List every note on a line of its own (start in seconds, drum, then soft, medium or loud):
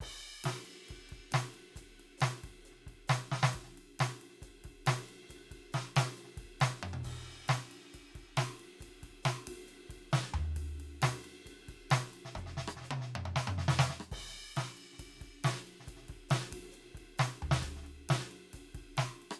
0.00 kick soft
0.00 crash medium
0.07 kick soft
0.10 kick soft
0.44 snare loud
0.44 hi-hat pedal soft
0.44 ride loud
0.65 ride soft
0.76 snare soft
0.89 kick soft
0.89 hi-hat pedal soft
0.89 ride medium
1.09 kick soft
1.09 ride soft
1.31 snare loud
1.31 hi-hat pedal medium
1.31 ride loud
1.54 ride soft
1.70 snare soft
1.76 kick soft
1.76 hi-hat pedal medium
1.76 ride medium
1.81 kick soft
2.00 ride soft
2.18 snare loud
2.18 hi-hat pedal medium
2.18 ride medium
2.43 kick soft
2.43 ride medium
2.49 kick soft
2.65 hi-hat pedal medium
2.65 ride soft
2.71 snare soft
2.76 snare soft
2.80 snare soft
2.86 kick soft
2.86 ride soft
2.92 kick soft
3.07 snare loud
3.07 hi-hat pedal medium
3.07 ride medium
3.32 snare medium
3.43 snare loud
3.53 kick soft
3.53 hi-hat pedal soft
3.53 ride medium
3.60 kick soft
3.60 snare soft
3.67 snare soft
3.73 snare soft
3.77 ride medium
3.99 snare loud
3.99 hi-hat pedal medium
3.99 ride medium
4.21 ride medium
4.30 snare soft
4.36 snare soft
4.42 kick soft
4.42 hi-hat pedal medium
4.42 ride medium
4.55 snare soft
4.64 kick soft
4.64 ride medium
4.70 kick soft
4.86 snare loud
4.86 hi-hat pedal medium
4.86 ride loud
5.09 ride soft
5.23 snare soft
5.29 kick soft
5.29 hi-hat pedal medium
5.29 ride medium
5.35 snare soft
5.40 snare soft
5.44 snare soft
5.47 kick soft
5.47 snare soft
5.52 ride medium
5.56 kick soft
5.72 snare loud
5.72 hi-hat pedal medium
5.72 ride medium
5.96 snare loud
5.96 ride loud
6.17 hi-hat pedal medium
6.17 ride soft
6.24 snare soft
6.30 snare soft
6.35 kick soft
6.35 snare soft
6.35 ride medium
6.43 kick soft
6.60 snare loud
6.60 hi-hat pedal medium
6.60 ride medium
6.83 mid tom loud
6.93 high tom loud
7.03 kick soft
7.03 hi-hat pedal soft
7.03 crash medium
7.10 kick soft
7.25 ride soft
7.48 snare loud
7.48 hi-hat pedal medium
7.48 ride medium
7.71 ride medium
7.83 snare soft
7.93 kick soft
7.93 hi-hat pedal soft
7.93 ride medium
8.15 kick soft
8.15 ride soft
8.37 snare loud
8.37 hi-hat pedal soft
8.37 ride loud
8.60 ride soft
8.80 kick soft
8.80 hi-hat pedal soft
8.80 ride medium
8.85 kick soft
9.03 kick soft
9.03 ride medium
9.23 snare loud
9.23 hi-hat pedal medium
9.23 ride loud
9.47 kick soft
9.47 ride loud
9.67 hi-hat pedal soft
9.67 ride soft
9.72 snare soft
9.76 snare soft
9.79 snare soft
9.82 snare soft
9.85 snare soft
9.89 kick soft
9.89 ride medium
10.11 snare loud
10.11 hi-hat pedal soft
10.11 ride medium
10.34 floor tom loud
10.55 kick soft
10.55 hi-hat pedal soft
10.55 ride medium
10.80 ride medium
11.02 snare loud
11.02 hi-hat pedal soft
11.02 ride loud
11.24 ride medium
11.46 kick soft
11.46 hi-hat pedal soft
11.46 ride medium
11.59 snare soft
11.68 kick soft
11.68 ride medium
11.74 kick soft
11.90 snare loud
11.90 hi-hat pedal soft
11.90 ride medium
12.13 ride medium
12.25 snare medium
12.35 kick soft
12.35 hi-hat pedal soft
12.35 mid tom medium
12.43 kick soft
12.43 snare soft
12.57 snare medium
12.68 cross-stick medium
12.76 snare soft
12.81 snare soft
12.81 hi-hat pedal medium
12.91 high tom loud
13.01 snare soft
13.15 mid tom loud
13.25 mid tom medium
13.36 snare medium
13.47 mid tom loud
13.58 snare medium
13.79 snare loud
13.90 snare medium
14.00 cross-stick medium
14.11 kick soft
14.11 crash medium
14.18 kick soft
14.18 snare soft
14.22 kick soft
14.28 snare soft
14.34 cross-stick soft
14.56 snare loud
14.56 hi-hat pedal soft
14.56 ride medium
14.77 ride soft
14.93 snare soft
14.98 kick soft
14.98 hi-hat pedal medium
14.98 ride medium
15.09 snare soft
15.14 snare soft
15.17 snare soft
15.21 kick soft
15.21 ride soft
15.43 snare loud
15.43 hi-hat pedal soft
15.43 ride loud
15.67 ride soft
15.80 snare soft
15.87 kick soft
15.87 hi-hat pedal medium
15.87 ride medium
15.96 snare soft
16.02 snare soft
16.08 kick soft
16.08 ride medium
16.15 kick soft
16.29 snare loud
16.29 hi-hat pedal medium
16.29 ride loud
16.52 kick soft
16.52 ride loud
16.64 snare soft
16.72 hi-hat pedal medium
16.72 ride soft
16.80 snare soft
16.84 snare soft
16.87 snare soft
16.90 snare soft
16.94 kick soft
16.94 ride medium
17.17 snare loud
17.17 hi-hat pedal medium
17.17 ride medium
17.42 floor tom loud
17.51 snare loud
17.62 kick soft
17.62 hi-hat pedal medium
17.62 ride medium
17.68 kick soft
17.76 snare soft
17.83 snare soft
17.83 ride soft
18.09 snare loud
18.09 hi-hat pedal soft
18.09 ride loud
18.31 ride soft
18.47 snare soft
18.53 kick soft
18.53 snare soft
18.53 hi-hat pedal medium
18.53 ride medium
18.61 snare soft
18.64 snare soft
18.74 kick soft
18.74 ride medium
18.81 kick soft
18.97 snare loud
18.97 hi-hat pedal soft
18.97 ride medium
19.22 ride soft
19.31 cross-stick medium